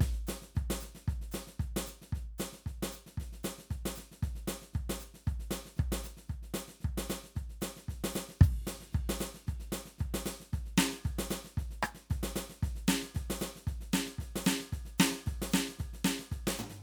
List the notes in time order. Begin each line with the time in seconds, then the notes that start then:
0.01 kick, snare
0.13 snare
0.27 snare, hi-hat pedal
0.42 snare
0.55 kick, snare
0.70 snare
0.80 snare, hi-hat pedal
0.95 snare
1.08 kick, snare
1.22 snare
1.32 snare, hi-hat pedal
1.47 snare
1.60 kick, snare
1.77 snare
1.86 snare, hi-hat pedal
2.02 snare
2.13 kick, snare
2.39 snare, hi-hat pedal
2.53 snare
2.66 kick, snare
2.83 snare
2.92 snare, hi-hat pedal
3.07 snare
3.18 kick, snare
3.33 snare
3.44 snare, hi-hat pedal
3.59 snare
3.71 kick, snare
3.86 snare
3.96 snare, hi-hat pedal
4.12 snare
4.23 kick, snare
4.36 snare
4.48 snare, hi-hat pedal
4.62 snare
4.74 kick, snare
4.90 snare
5.00 snare, hi-hat pedal
5.14 snare
5.23 snare, hi-hat pedal
5.28 kick
5.40 snare
5.51 snare, hi-hat pedal
5.66 snare
5.76 snare, hi-hat pedal
5.80 kick
5.92 snare
6.04 snare, hi-hat pedal
6.17 snare
6.27 kick, snare, hi-hat pedal
6.43 snare
6.54 snare, hi-hat pedal
6.68 snare
6.81 snare
6.85 kick
6.98 snare
7.10 snare, hi-hat pedal
7.24 snare
7.36 kick, snare
7.50 snare
7.62 snare, hi-hat pedal
7.77 snare
7.89 kick, snare
8.04 snare
8.14 snare, hi-hat pedal
8.29 snare
8.37 kick, hi-hat pedal
8.43 ride
8.67 snare, hi-hat pedal
8.81 snare
8.91 kick, snare, hi-hat pedal
9.10 snare
9.19 snare, hi-hat pedal
9.35 snare
9.47 kick, snare
9.60 snare
9.72 snare, hi-hat pedal
9.86 snare
9.99 kick, snare
10.14 snare
10.26 snare, hi-hat pedal
10.41 snare
10.53 kick, snare
10.66 snare
10.78 snare, hi-hat pedal
10.92 snare
11.05 kick, snare
11.19 snare
11.30 snare, hi-hat pedal
11.45 snare
11.58 kick, snare
11.71 snare
11.83 cross-stick, hi-hat pedal
11.95 snare
12.10 kick, snare
12.23 snare
12.36 snare, hi-hat pedal
12.50 snare
12.63 kick, snare
12.76 snare
12.88 snare, hi-hat pedal
13.03 snare
13.15 kick, snare
13.30 snare
13.40 snare, hi-hat pedal
13.56 snare
13.67 kick, snare
13.81 snare
13.93 snare, hi-hat pedal
14.06 snare
14.19 kick, snare
14.36 snare
14.44 snare, hi-hat pedal
14.61 snare
14.73 kick, snare
14.86 snare
14.98 snare, hi-hat pedal
15.12 snare
15.27 kick, snare
15.42 snare
15.52 snare, hi-hat pedal
15.69 snare
15.79 kick, snare
15.94 snare
16.05 snare, hi-hat pedal
16.20 snare
16.32 kick, snare
16.47 snare
16.58 floor tom, hi-hat pedal
16.70 snare